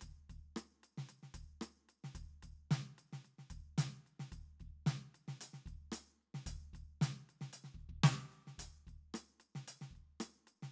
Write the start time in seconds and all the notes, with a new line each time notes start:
0.01 kick, percussion
0.29 kick, percussion
0.56 cross-stick, percussion
0.83 percussion
0.98 snare
1.09 percussion
1.23 snare
1.34 kick, percussion
1.61 cross-stick, percussion
1.89 percussion
2.04 snare
2.15 kick, percussion
2.43 kick, percussion
2.71 snare, percussion
2.98 percussion
3.13 snare
3.25 percussion
3.38 snare
3.50 kick, percussion
3.78 snare, percussion
4.06 percussion
4.19 snare
4.32 kick, percussion
4.60 kick, percussion
4.86 snare, percussion
5.14 percussion
5.28 snare
5.41 percussion
5.53 snare
5.66 kick, percussion
5.92 cross-stick, percussion
6.21 percussion
6.34 snare
6.46 kick, percussion
6.73 kick, percussion
7.01 snare, percussion
7.29 percussion
7.41 snare
7.53 percussion
7.64 snare
7.74 kick
7.79 percussion
7.89 kick
8.03 snare, percussion
8.32 percussion
8.47 snare
8.58 kick, percussion
8.87 kick, percussion
9.14 cross-stick, percussion
9.40 percussion
9.55 snare
9.68 percussion
9.81 snare
9.91 kick
9.95 percussion
10.20 cross-stick, percussion
10.47 percussion
10.62 snare